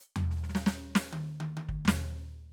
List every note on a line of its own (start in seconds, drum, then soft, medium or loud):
0.00 hi-hat pedal medium
0.16 floor tom loud
0.31 snare soft
0.36 snare soft
0.43 snare soft
0.49 snare soft
0.55 snare loud
0.66 snare loud
0.95 snare loud
1.13 high tom loud
1.40 high tom loud
1.57 high tom loud
1.69 kick medium
1.85 snare loud
1.85 floor tom loud